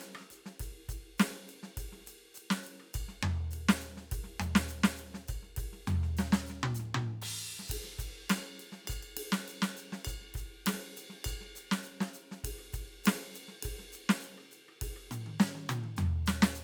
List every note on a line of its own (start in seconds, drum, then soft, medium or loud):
0.01 hi-hat pedal medium
0.01 ride soft
0.15 cross-stick medium
0.21 snare soft
0.30 kick soft
0.30 hi-hat pedal medium
0.30 ride soft
0.46 snare soft
0.60 kick soft
0.60 hi-hat pedal medium
0.60 ride medium
0.70 snare soft
0.89 kick soft
0.89 hi-hat pedal medium
0.89 ride medium
1.18 snare loud
1.18 hi-hat pedal medium
1.18 ride loud
1.31 snare soft
1.48 hi-hat pedal soft
1.48 ride soft
1.63 snare soft
1.77 kick soft
1.77 hi-hat pedal medium
1.77 ride medium
1.92 snare soft
2.00 snare soft
2.05 snare soft
2.05 hi-hat pedal medium
2.05 ride medium
2.08 snare soft
2.34 hi-hat pedal medium
2.34 ride medium
2.50 snare loud
2.63 hi-hat pedal medium
2.63 ride medium
2.80 cross-stick soft
2.94 kick soft
2.94 hi-hat pedal medium
2.94 ride bell loud
3.01 kick soft
3.04 kick soft
3.04 snare soft
3.22 hi-hat pedal soft
3.22 floor tom loud
3.51 hi-hat pedal medium
3.51 ride medium
3.69 snare loud
3.80 hi-hat pedal medium
3.80 ride soft
3.97 snare soft
4.11 kick medium
4.11 hi-hat pedal medium
4.11 ride medium
4.18 kick soft
4.21 kick soft
4.21 snare soft
4.40 hi-hat pedal medium
4.40 floor tom loud
4.55 snare loud
4.68 hi-hat pedal medium
4.68 ride medium
4.84 snare loud
4.96 hi-hat pedal medium
4.96 ride medium
5.14 snare medium
5.28 kick soft
5.28 hi-hat pedal medium
5.28 ride bell medium
5.35 kick soft
5.38 kick soft
5.42 snare soft
5.57 kick soft
5.57 hi-hat pedal medium
5.57 ride medium
5.67 kick soft
5.73 snare soft
5.87 floor tom loud
5.87 hi-hat pedal medium
6.03 snare soft
6.17 snare medium
6.17 hi-hat pedal medium
6.32 snare loud
6.46 snare soft
6.46 hi-hat pedal medium
6.63 mid tom loud
6.75 hi-hat pedal loud
6.79 snare soft
6.95 mid tom loud
7.22 snare soft
7.22 crash loud
7.59 snare soft
7.68 kick soft
7.68 hi-hat pedal medium
7.68 ride loud
7.78 kick soft
7.83 snare soft
7.88 snare soft
7.91 snare soft
7.94 snare soft
7.97 kick soft
7.97 snare soft
7.97 hi-hat pedal loud
7.97 ride medium
8.07 kick soft
8.30 snare loud
8.30 hi-hat pedal medium
8.30 ride bell loud
8.39 snare soft
8.59 hi-hat pedal medium
8.59 ride medium
8.72 snare soft
8.85 snare soft
8.85 ride bell loud
8.89 kick soft
8.89 hi-hat pedal loud
8.93 snare soft
8.98 kick soft
9.03 ride bell medium
9.17 hi-hat pedal soft
9.17 ride loud
9.32 snare loud
9.48 hi-hat pedal medium
9.48 ride medium
9.62 snare loud
9.77 hi-hat pedal medium
9.77 ride soft
9.92 snare medium
10.05 kick soft
10.05 hi-hat pedal medium
10.05 ride bell loud
10.15 kick soft
10.21 snare soft
10.34 kick soft
10.34 hi-hat pedal medium
10.34 ride medium
10.43 kick soft
10.66 snare loud
10.66 hi-hat pedal medium
10.66 ride loud
10.73 snare soft
10.96 hi-hat pedal medium
10.96 ride medium
11.10 snare soft
11.24 kick soft
11.24 hi-hat pedal medium
11.24 ride bell loud
11.32 kick soft
11.35 kick soft
11.41 snare soft
11.55 hi-hat pedal medium
11.55 ride soft
11.71 snare loud
11.83 hi-hat pedal medium
11.87 ride soft
12.00 snare medium
12.13 hi-hat pedal medium
12.13 ride soft
12.31 snare soft
12.44 kick soft
12.44 hi-hat pedal medium
12.44 ride loud
12.58 cross-stick soft
12.73 kick soft
12.73 hi-hat pedal medium
12.73 ride medium
12.82 kick soft
13.04 snare loud
13.04 hi-hat pedal medium
13.04 ride loud
13.15 snare soft
13.34 hi-hat pedal medium
13.34 ride medium
13.48 snare soft
13.63 kick soft
13.63 hi-hat pedal medium
13.63 ride loud
13.79 snare soft
13.92 hi-hat pedal medium
13.92 ride soft
14.09 snare loud
14.20 hi-hat pedal medium
14.24 ride medium
14.38 cross-stick soft
14.51 hi-hat pedal medium
14.51 ride soft
14.68 cross-stick soft
14.81 kick soft
14.81 hi-hat pedal medium
14.81 ride loud
14.87 kick soft
14.90 kick soft
14.96 cross-stick soft
15.11 hi-hat pedal medium
15.11 mid tom medium
15.26 high tom medium
15.39 snare loud
15.39 hi-hat pedal medium
15.55 high tom medium
15.69 hi-hat pedal medium
15.69 mid tom loud
15.84 high tom medium
15.97 floor tom loud
15.97 hi-hat pedal medium
16.26 snare loud
16.26 hi-hat pedal loud
16.42 snare loud
16.55 hi-hat pedal medium